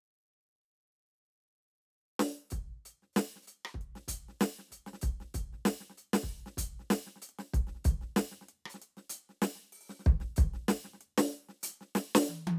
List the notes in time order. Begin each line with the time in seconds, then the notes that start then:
2.19 snare
2.50 closed hi-hat, kick
2.85 closed hi-hat
3.02 snare
3.13 snare, hi-hat pedal
3.36 snare
3.42 hi-hat pedal
3.47 closed hi-hat
3.65 cross-stick
3.74 kick
3.81 closed hi-hat
3.95 snare
4.08 closed hi-hat, kick
4.28 snare
4.40 snare, hi-hat pedal
4.59 snare
4.68 kick, snare
4.72 closed hi-hat
4.86 snare
4.93 snare
5.01 closed hi-hat, kick
5.20 snare
5.34 closed hi-hat, kick
5.53 snare
5.65 snare
5.80 snare
5.90 snare
5.98 closed hi-hat
6.13 snare
6.23 kick
6.29 open hi-hat
6.38 hi-hat pedal
6.46 snare
6.57 closed hi-hat, kick
6.79 snare
6.90 snare, hi-hat pedal
7.06 snare
7.16 snare
7.22 closed hi-hat
7.29 closed hi-hat
7.39 snare
7.54 kick, closed hi-hat
7.67 snare
7.75 snare
7.84 closed hi-hat, kick
8.01 snare
8.16 snare
8.31 snare
8.41 snare
8.48 closed hi-hat
8.66 cross-stick
8.70 hi-hat pedal
8.74 snare
8.82 closed hi-hat
8.97 snare
9.09 closed hi-hat
9.29 snare
9.42 snare
9.55 snare
9.59 snare
9.63 snare
9.72 open hi-hat
9.81 open hi-hat
9.89 snare
10.05 kick, hi-hat pedal, open hi-hat
10.20 snare
10.36 closed hi-hat, kick
10.54 snare
10.68 snare
10.84 snare
10.93 snare
11.01 closed hi-hat
11.18 snare
11.23 hi-hat pedal
11.33 open hi-hat
11.49 snare
11.61 closed hi-hat, hi-hat pedal
11.81 snare
11.95 snare
12.15 snare
12.27 hi-hat pedal, high tom
12.47 high tom